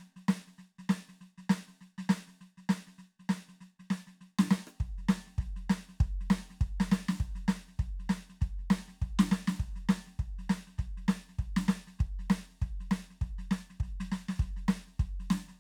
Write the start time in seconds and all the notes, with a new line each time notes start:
0.01 snare
0.17 snare
0.29 snare
0.49 snare
0.59 snare
0.80 snare
0.90 snare
1.10 snare
1.22 snare
1.39 snare
1.51 snare
1.69 snare
1.82 snare
1.99 snare
2.10 snare
2.16 snare
2.29 snare
2.42 snare
2.59 snare
2.70 snare
2.88 snare
2.99 snare
3.21 snare
3.30 snare
3.50 snare
3.62 snare
3.81 snare
3.91 snare
4.08 snare
4.22 snare
4.40 snare
4.52 snare
4.68 cross-stick
4.81 kick, snare
4.99 snare
5.10 snare
5.28 snare
5.39 kick, snare
5.57 snare
5.71 snare
5.90 snare
6.01 kick, snare
6.22 snare
6.31 snare
6.51 snare
6.62 kick, snare
6.81 snare
6.93 snare
7.10 snare
7.21 kick, snare
7.36 snare
7.49 snare
7.69 snare
7.80 kick, snare
8.01 snare
8.11 kick, snare
8.31 snare
8.42 kick, snare
8.60 snare
8.71 snare
8.89 snare
9.03 kick, snare
9.20 snare
9.33 snare
9.49 snare
9.61 kick, snare
9.77 snare
9.90 snare
10.08 snare
10.20 kick, snare
10.40 snare
10.51 snare
10.68 snare
10.79 kick, snare
10.98 snare
11.09 snare
11.30 snare
11.40 kick, snare
11.58 snare
11.69 snare
11.88 snare
12.00 kick, snare
12.20 snare
12.31 snare
12.52 snare
12.63 kick, snare
12.81 snare
12.92 snare
13.11 snare
13.22 kick, snare
13.40 snare
13.52 snare
13.71 snare
13.81 kick, snare
14.01 snare
14.13 kick, snare
14.30 snare
14.41 kick, snare
14.58 snare
14.69 snare
14.88 snare
15.01 kick, snare
15.21 snare
15.31 snare
15.49 snare